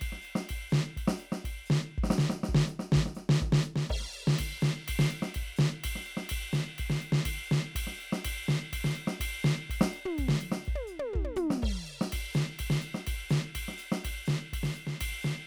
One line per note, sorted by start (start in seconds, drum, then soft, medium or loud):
0.01 kick soft
0.01 ride bell medium
0.08 kick soft
0.12 snare soft
0.21 hi-hat pedal medium
0.21 ride soft
0.35 snare medium
0.49 kick soft
0.49 ride bell medium
0.70 snare loud
0.70 hi-hat pedal medium
0.97 kick soft
0.97 ride medium
1.08 snare medium
1.17 hi-hat pedal medium
1.17 ride soft
1.32 snare medium
1.44 kick soft
1.44 ride medium
1.50 kick soft
1.66 hi-hat pedal medium
1.70 snare loud
1.98 kick soft
2.04 kick soft
2.04 snare medium
2.10 snare medium
2.18 snare loud
2.18 hi-hat pedal medium
2.30 snare medium
2.43 snare medium
2.48 kick soft
2.55 snare loud
2.67 snare soft
2.67 hi-hat pedal medium
2.79 snare medium
2.92 kick soft
2.92 snare loud
3.06 snare soft
3.15 snare soft
3.15 hi-hat pedal medium
3.29 snare loud
3.42 kick soft
3.42 snare soft
3.48 kick soft
3.52 snare loud
3.63 hi-hat pedal medium
3.76 snare medium
3.89 kick soft
3.89 crash loud
3.96 kick soft
4.00 snare soft
4.13 hi-hat pedal medium
4.27 snare loud
4.38 kick soft
4.38 ride bell loud
4.60 snare loud
4.60 hi-hat pedal medium
4.88 kick soft
4.88 ride bell loud
4.95 kick soft
4.99 snare loud
5.09 hi-hat pedal medium
5.09 ride medium
5.22 snare medium
5.30 hi-hat pedal soft
5.34 kick soft
5.34 ride bell medium
5.42 kick soft
5.56 snare loud
5.56 hi-hat pedal medium
5.84 kick soft
5.84 ride bell loud
5.95 snare soft
6.03 hi-hat pedal medium
6.03 ride soft
6.17 snare medium
6.29 kick soft
6.29 ride bell loud
6.37 kick soft
6.52 snare medium
6.52 hi-hat pedal medium
6.59 snare soft
6.72 hi-hat pedal soft
6.78 kick soft
6.78 ride bell medium
6.85 kick soft
6.90 snare medium
6.98 hi-hat pedal medium
6.98 ride soft
7.12 snare loud
7.25 kick soft
7.25 ride bell loud
7.31 kick soft
7.45 hi-hat pedal medium
7.51 snare loud
7.75 kick soft
7.75 ride bell loud
7.81 kick soft
7.87 snare soft
7.94 hi-hat pedal medium
8.00 ride soft
8.13 snare medium
8.24 kick soft
8.24 ride bell loud
8.44 hi-hat pedal medium
8.48 snare loud
8.66 hi-hat pedal soft
8.73 kick soft
8.73 ride bell loud
8.78 kick soft
8.84 snare medium
8.91 hi-hat pedal medium
8.95 ride soft
9.07 snare medium
9.20 kick soft
9.20 ride bell loud
9.40 hi-hat pedal medium
9.44 snare loud
9.70 kick soft
9.70 ride bell medium
9.75 kick soft
9.81 snare loud
9.90 hi-hat pedal medium
9.90 ride soft
10.05 floor tom loud
10.18 kick soft
10.18 ride bell medium
10.25 kick soft
10.25 snare loud
10.39 hi-hat pedal medium
10.39 ride medium
10.52 snare medium
10.65 kick soft
10.65 ride soft
10.74 kick soft
10.74 high tom medium
10.87 hi-hat pedal medium
10.99 high tom loud
11.13 kick soft
11.13 mid tom medium
11.22 kick soft
11.22 high tom medium
11.36 hi-hat pedal medium
11.36 floor tom loud
11.50 snare medium
11.57 snare soft
11.62 kick soft
11.62 crash medium
11.74 kick soft
11.85 hi-hat pedal medium
12.01 snare medium
12.12 kick soft
12.12 ride bell loud
12.33 snare loud
12.33 hi-hat pedal medium
12.59 kick soft
12.59 ride bell loud
12.70 snare loud
12.82 hi-hat pedal medium
12.82 ride soft
12.94 snare medium
13.07 kick soft
13.07 ride bell loud
13.14 kick soft
13.30 snare loud
13.30 hi-hat pedal medium
13.55 kick soft
13.55 ride bell loud
13.61 kick soft
13.68 snare soft
13.78 hi-hat pedal medium
13.78 ride medium
13.92 snare medium
14.05 kick soft
14.05 ride bell loud
14.10 kick soft
14.25 snare loud
14.25 hi-hat pedal medium
14.47 hi-hat pedal soft
14.53 kick soft
14.53 ride bell medium
14.59 kick soft
14.63 snare medium
14.74 hi-hat pedal medium
14.74 ride soft
14.87 snare medium
15.01 kick soft
15.01 ride bell loud
15.07 kick soft
15.21 snare medium
15.21 hi-hat pedal medium